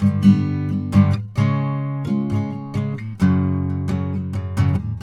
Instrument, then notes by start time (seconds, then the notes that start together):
acoustic guitar
0.01 G2 G3
0.07 D3
0.24 G2 D3 G3 B3
0.71 G3 B3
0.75 D3
0.94 G2 D3 G3 B3
1.39 C#3 G#3
1.43 C#4
2.06 C#3 C#4 F4 A#4
2.11 G#3
2.31 C#3
2.35 G#3 C#4
2.47 C#4
2.54 G#3
2.75 C#3 G#3 C#4
2.97 E2 A2
3.21 F#2 C#3
3.39 F#3
3.72 F#2
3.89 F#2 C#3 F#3
4.15 F#2 C#3 F#3
4.35 F#2 C#3 F#3
4.58 F#2 C#3
4.77 E2